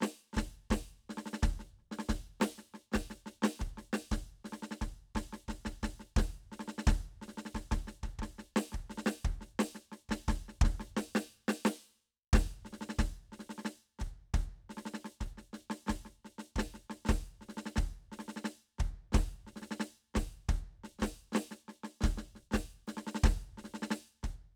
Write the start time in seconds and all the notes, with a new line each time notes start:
0.01 snare
0.02 snare
0.33 kick, snare
0.37 snare
0.71 kick, snare
1.10 snare
1.18 snare
1.26 snare
1.33 snare
1.43 kick, snare
1.60 snare
1.79 snare
1.92 snare
1.99 snare
2.09 kick, snare
2.40 snare
2.58 snare
2.74 snare
2.92 snare
2.94 kick, snare
3.10 snare
3.26 snare
3.43 snare
3.60 kick, snare
3.78 snare
3.93 snare
4.12 kick, snare
4.45 snare
4.53 snare
4.63 snare
4.71 snare
4.81 kick, snare
5.15 kick, snare
5.33 snare
5.48 kick, snare
5.65 kick, snare
5.83 kick, snare
6.00 snare
6.17 kick, snare
6.52 snare
6.60 snare
6.68 snare
6.78 snare
6.87 kick, snare
7.22 snare
7.28 snare
7.38 snare
7.45 snare
7.55 kick, snare
7.72 kick, snare
7.87 snare
8.03 kick, snare
8.19 kick, snare
8.39 snare
8.56 snare
8.72 kick, snare
8.90 snare
8.98 snare
9.06 snare
9.25 kick, snare
9.41 snare
9.59 snare
9.75 snare
9.92 snare
10.09 kick, snare
10.28 kick, snare
10.49 snare
10.61 kick, snare
10.80 snare
10.97 snare
11.15 snare
11.48 snare
11.65 snare
12.33 kick, snare
12.65 snare
12.73 snare
12.81 snare
12.89 snare
12.99 kick, snare
13.32 snare
13.39 snare
13.58 snare
13.65 snare
13.99 kick, snare
14.34 kick, snare
14.70 snare
14.77 snare
14.86 snare
14.94 snare
15.05 snare
15.21 kick, snare
15.38 snare
15.53 snare
15.70 snare
15.87 snare
15.89 kick, snare
16.05 snare
16.25 snare
16.39 snare
16.56 kick, snare
16.59 snare
16.74 snare
16.90 snare
17.05 snare
17.09 kick, snare
17.41 snare
17.49 snare
17.57 snare
17.66 snare
17.76 kick, snare
18.12 snare
18.19 snare
18.28 snare
18.36 snare
18.45 snare
18.79 kick, snare
19.12 snare
19.14 kick, snare
19.47 snare
19.56 snare
19.62 snare
19.71 snare
19.80 snare
20.14 kick, snare
20.49 kick, snare
20.84 snare
20.99 kick, snare
21.02 snare
21.32 snare
21.35 snare
21.51 snare
21.68 snare
21.84 snare
22.01 kick, snare
22.04 snare
22.18 snare
22.35 snare
22.51 snare
22.54 kick, snare
22.87 snare, hi-hat pedal
22.97 snare
23.07 snare
23.15 snare
23.24 kick, snare
23.58 snare
23.64 snare
23.74 snare
23.82 snare
23.91 snare
24.23 kick, snare